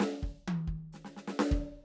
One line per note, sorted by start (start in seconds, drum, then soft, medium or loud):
0.00 snare loud
0.22 kick medium
0.48 high tom loud
0.67 kick medium
0.92 snare soft
0.92 hi-hat pedal soft
1.05 snare medium
1.16 snare soft
1.27 snare medium
1.39 snare loud
1.51 kick medium